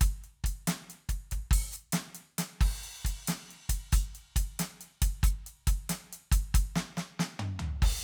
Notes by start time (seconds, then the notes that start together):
0.01 kick, closed hi-hat, hi-hat pedal
0.24 closed hi-hat
0.45 kick, closed hi-hat
0.68 snare, closed hi-hat
0.90 closed hi-hat
1.10 kick, closed hi-hat
1.32 kick, closed hi-hat
1.51 kick, open hi-hat
1.73 hi-hat pedal
1.93 snare, closed hi-hat
2.15 closed hi-hat
2.39 snare, closed hi-hat
2.61 kick, crash
2.84 closed hi-hat
3.05 kick, closed hi-hat
3.28 snare, closed hi-hat
3.51 closed hi-hat
3.70 kick, closed hi-hat
3.93 closed hi-hat, kick
4.15 closed hi-hat
4.37 kick, closed hi-hat
4.60 snare, closed hi-hat
4.81 closed hi-hat
5.02 kick, closed hi-hat
5.24 kick, hi-hat pedal, open hi-hat
5.47 closed hi-hat
5.68 kick, closed hi-hat
5.90 snare, closed hi-hat
6.13 closed hi-hat
6.32 kick, closed hi-hat
6.55 kick, closed hi-hat
6.76 snare
6.98 snare
7.20 snare
7.40 high tom
7.60 mid tom
7.83 kick, crash